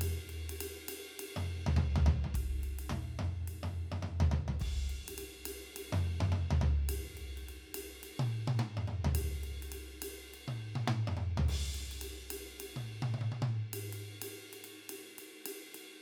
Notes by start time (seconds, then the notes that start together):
0.01 ride
0.29 ride
0.49 ride
0.60 ride
0.88 ride
1.19 ride
1.36 mid tom
1.66 floor tom
1.76 floor tom
1.96 floor tom
2.06 floor tom
2.24 floor tom
2.34 kick, ride
2.63 ride
2.79 ride
2.89 mid tom
3.19 mid tom
3.48 ride
3.63 mid tom
3.92 mid tom
4.02 mid tom
4.20 floor tom
4.31 floor tom
4.48 floor tom
4.60 kick, ride
4.89 ride
5.08 ride
5.18 ride
5.45 ride
5.76 ride
5.92 mid tom
6.20 mid tom
6.32 mid tom
6.50 floor tom
6.61 floor tom
6.89 ride
7.17 ride
7.37 ride
7.48 ride
7.74 ride
8.03 ride
8.19 high tom
8.47 high tom
8.59 high tom
8.77 mid tom
8.87 mid tom
9.04 floor tom
9.15 ride
9.43 ride
9.62 ride
9.72 ride
10.02 ride
10.34 ride
10.48 high tom
10.75 high tom
10.88 high tom
11.07 mid tom
11.17 mid tom
11.37 floor tom
11.48 ride
11.74 ride
11.91 ride
12.01 ride
12.30 ride
12.60 ride
12.76 high tom
13.02 high tom
13.14 high tom
13.21 high tom
13.32 high tom
13.42 high tom
13.73 ride
13.93 ride
14.22 ride
14.53 ride
14.64 ride
14.89 ride
15.18 ride
15.46 ride
15.74 ride